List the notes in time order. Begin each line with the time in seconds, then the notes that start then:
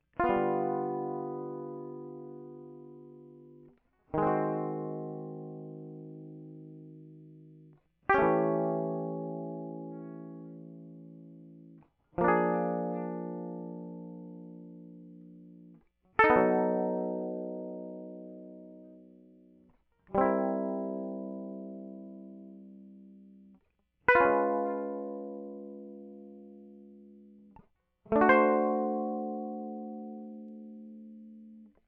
0.20 F4
0.24 B3
0.30 G3
0.38 D3
4.15 D#3 G#3
4.23 C4
4.27 F#4
8.10 G4
8.15 C#4
8.19 A3
8.23 E3
12.19 F3 A#3
12.24 D4
12.29 G#4
16.19 A4
16.24 D#4
16.30 B3
16.37 F#3
20.15 G3 C4
20.21 E4 A#4
24.09 B4
24.16 F4
24.21 C#4
24.26 G#3
28.13 A3 D4
28.22 F#4
28.29 C5